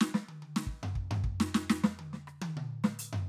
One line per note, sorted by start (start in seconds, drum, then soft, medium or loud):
0.01 snare loud
0.15 snare medium
0.29 high tom medium
0.43 high tom medium
0.57 snare loud
0.67 kick medium
0.84 floor tom loud
0.96 kick medium
1.11 floor tom loud
1.24 kick medium
1.34 kick soft
1.41 snare loud
1.55 snare loud
1.70 snare loud
1.84 snare loud
1.99 high tom medium
2.14 snare medium
2.28 cross-stick medium
2.42 high tom loud
2.57 mid tom medium
2.84 snare loud
2.99 closed hi-hat loud
3.13 floor tom loud